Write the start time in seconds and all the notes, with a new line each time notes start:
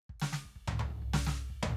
0.09 kick
0.20 snare, ride
0.32 snare, ride
0.45 kick
0.56 kick
0.67 floor tom, high tom
0.79 floor tom, high tom
0.90 kick
1.02 kick
1.13 snare, ride
1.25 snare, ride
1.38 kick
1.50 kick
1.63 floor tom, high tom